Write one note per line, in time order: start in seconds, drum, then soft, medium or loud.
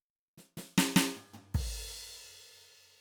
0.38 snare soft
0.57 snare medium
0.78 snare loud
0.96 snare loud
1.16 floor tom soft
1.34 floor tom medium
1.54 kick medium
1.54 crash loud